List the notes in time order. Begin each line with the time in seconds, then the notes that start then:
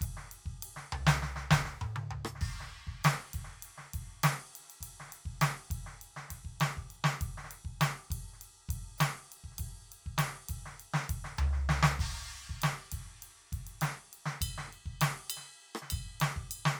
0.01 kick, hi-hat pedal, ride
0.08 kick
0.17 snare
0.31 ride
0.38 snare
0.46 kick, snare
0.52 kick
0.62 ride
0.76 snare
0.92 floor tom
1.07 snare
1.22 snare
1.36 snare
1.51 kick, snare, hi-hat pedal
1.65 snare
1.81 mid tom
1.96 high tom
2.11 floor tom
2.25 cross-stick
2.35 snare
2.40 kick, hi-hat pedal, crash
2.49 kick
2.55 kick
2.60 snare
2.73 snare
2.87 kick
2.93 kick
3.04 snare, hi-hat pedal, ride
3.14 snare
3.33 kick, ride
3.40 kick
3.44 snare
3.62 hi-hat pedal, ride
3.78 snare
3.94 kick, ride
4.00 kick
4.23 snare, hi-hat pedal, ride
4.55 snare, ride
4.63 snare
4.67 snare, ride
4.81 kick, hi-hat pedal, ride
5.00 snare
5.09 snare, ride
5.25 kick
5.41 snare, hi-hat pedal, ride
5.55 snare
5.70 kick, ride
5.77 kick
5.86 snare
6.01 hi-hat pedal, ride
6.16 snare
6.28 kick, snare, ride
6.45 kick
6.60 snare, hi-hat pedal, ride
6.74 kick, snare
6.82 kick
6.90 hi-hat pedal, ride
7.04 snare
7.19 kick, hi-hat pedal, ride
7.28 kick
7.38 snare
7.44 snare
7.51 ride
7.65 kick
7.81 snare, hi-hat pedal, ride
7.92 snare
8.10 kick, ride
8.17 kick
8.33 snare
8.41 snare, ride
8.69 kick, ride
8.76 kick
8.98 snare, hi-hat pedal, ride
9.10 snare
9.32 ride
9.44 kick
9.52 snare
9.58 kick, hi-hat pedal, ride
9.65 kick
9.92 ride
10.06 kick
10.18 snare, hi-hat pedal, ride
10.27 snare
10.49 kick, ride
10.55 kick
10.66 snare
10.80 ride
10.94 snare
11.09 kick, ride
11.15 kick
11.24 snare
11.37 floor tom, hi-hat pedal
11.53 snare
11.69 snare
11.83 snare
11.94 snare
11.99 kick, hi-hat pedal, crash
12.10 kick
12.20 snare
12.49 kick
12.62 snare, hi-hat pedal, ride
12.92 kick, ride
12.98 kick, snare
13.22 ride
13.52 kick, snare, ride
13.59 kick
13.67 ride
13.81 snare, hi-hat pedal, ride
14.13 ride
14.26 snare
14.40 kick, hi-hat pedal, ride bell
14.47 kick
14.58 snare
14.68 cross-stick
14.73 ride
14.86 kick
14.91 kick
15.01 snare, hi-hat pedal, ride
15.30 ride bell
15.37 snare
15.60 ride
15.75 cross-stick
15.82 snare
15.90 kick, ride bell
15.99 kick
16.20 snare, hi-hat pedal, ride
16.35 kick, snare
16.42 kick
16.50 hi-hat pedal, ride bell
16.65 snare